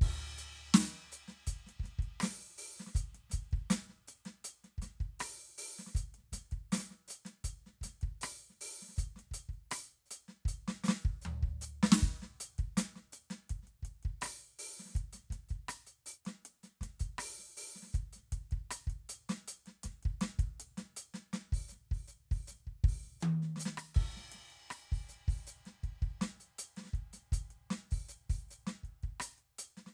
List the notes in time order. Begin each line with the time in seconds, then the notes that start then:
0.02 kick, crash
0.39 closed hi-hat
0.56 closed hi-hat
0.75 open hi-hat, snare
0.83 snare
1.13 open hi-hat, hi-hat pedal
1.29 snare, closed hi-hat
1.48 closed hi-hat, kick
1.67 snare, closed hi-hat
1.80 kick, snare
1.86 closed hi-hat
1.99 kick, closed hi-hat
2.21 open hi-hat, cross-stick, snare
2.59 open hi-hat
2.80 snare
2.87 snare
2.95 closed hi-hat, kick, hi-hat pedal
3.14 snare, closed hi-hat
3.30 closed hi-hat, kick, snare
3.52 kick, closed hi-hat
3.71 closed hi-hat, snare
3.90 snare
4.08 closed hi-hat, hi-hat pedal
4.26 snare, closed hi-hat
4.45 closed hi-hat
4.65 snare, closed hi-hat
4.79 closed hi-hat, kick, snare
5.01 kick, closed hi-hat
5.20 open hi-hat, cross-stick
5.59 open hi-hat
5.79 snare
5.87 snare
5.95 closed hi-hat, kick, hi-hat pedal
6.15 snare, closed hi-hat
6.33 closed hi-hat, kick, snare
6.52 kick, closed hi-hat
6.73 open hi-hat, snare
6.79 snare
6.91 snare
7.08 closed hi-hat, hi-hat pedal
7.26 snare, closed hi-hat
7.45 closed hi-hat, kick
7.67 snare
7.82 closed hi-hat, kick, snare
8.02 kick, closed hi-hat
8.22 open hi-hat, cross-stick
8.50 snare
8.62 open hi-hat
8.83 snare
8.89 snare
8.93 snare, hi-hat pedal
8.99 closed hi-hat, kick
9.17 snare, closed hi-hat
9.32 closed hi-hat, kick
9.50 kick
9.54 closed hi-hat
9.72 open hi-hat, cross-stick
10.06 hi-hat pedal
10.11 closed hi-hat
10.29 snare
10.46 closed hi-hat, kick
10.68 snare
10.85 snare, hi-hat pedal
10.89 snare
11.05 kick
11.22 hi-hat pedal, floor tom
11.43 kick
11.62 hi-hat pedal
11.84 snare
11.93 snare
12.03 kick
12.23 snare
12.41 closed hi-hat
12.59 kick, closed hi-hat
12.78 closed hi-hat, snare
12.96 snare
13.13 closed hi-hat, hi-hat pedal
13.31 snare, closed hi-hat
13.50 kick, closed hi-hat
13.63 snare
13.68 closed hi-hat
13.83 kick, closed hi-hat
14.03 kick, closed hi-hat
14.22 open hi-hat, cross-stick
14.26 cross-stick
14.60 open hi-hat
14.80 snare
14.86 snare
14.90 snare
14.95 kick, closed hi-hat, hi-hat pedal
15.13 closed hi-hat, snare
15.31 kick, snare, closed hi-hat
15.49 closed hi-hat, kick
15.69 closed hi-hat, cross-stick
15.87 closed hi-hat
16.07 open hi-hat
16.26 snare, closed hi-hat
16.46 closed hi-hat
16.64 closed hi-hat, snare
16.82 kick, snare, closed hi-hat
17.00 closed hi-hat, kick
17.19 open hi-hat, cross-stick
17.40 snare
17.58 open hi-hat
17.76 snare
17.83 snare
17.88 snare
17.93 kick, closed hi-hat, hi-hat pedal
18.13 closed hi-hat, snare
18.33 kick, closed hi-hat
18.52 kick, closed hi-hat
18.71 closed hi-hat, cross-stick
18.88 kick, closed hi-hat
19.10 closed hi-hat
19.30 closed hi-hat, snare
19.48 closed hi-hat
19.67 snare, closed hi-hat
19.84 kick, snare, closed hi-hat
20.03 kick, closed hi-hat
20.22 snare, closed hi-hat
20.40 kick, closed hi-hat
20.60 closed hi-hat
20.78 snare, closed hi-hat
20.97 closed hi-hat
21.15 snare, closed hi-hat
21.34 snare, closed hi-hat
21.53 open hi-hat, kick
21.69 snare, hi-hat pedal
21.92 open hi-hat, kick
22.08 hi-hat pedal
22.32 open hi-hat, kick
22.48 snare, hi-hat pedal
22.68 kick
22.85 kick
22.89 open hi-hat
23.02 snare
23.06 snare
23.21 hi-hat pedal, high tom
23.43 snare
23.57 snare, hi-hat pedal
23.66 snare
23.78 cross-stick
23.95 kick, crash
24.17 snare
24.32 snare, closed hi-hat
24.51 closed hi-hat
24.71 cross-stick, closed hi-hat
24.93 open hi-hat, kick
25.10 snare, hi-hat pedal
25.29 open hi-hat, kick
25.48 hi-hat pedal
25.66 snare, closed hi-hat
25.84 kick, closed hi-hat
26.03 kick, closed hi-hat
26.22 snare, closed hi-hat
26.41 closed hi-hat
26.59 closed hi-hat
26.77 snare, closed hi-hat
26.82 snare
26.85 snare
26.94 kick, closed hi-hat
27.14 closed hi-hat, snare
27.33 closed hi-hat, kick
27.51 closed hi-hat
27.71 snare, closed hi-hat
27.92 open hi-hat, kick
28.09 hi-hat pedal
28.30 open hi-hat, kick
28.49 hi-hat pedal, open hi-hat
28.68 snare, closed hi-hat
28.84 kick, closed hi-hat
29.03 kick, closed hi-hat
29.21 closed hi-hat, cross-stick
29.39 closed hi-hat
29.59 closed hi-hat
29.78 snare, closed hi-hat
29.87 snare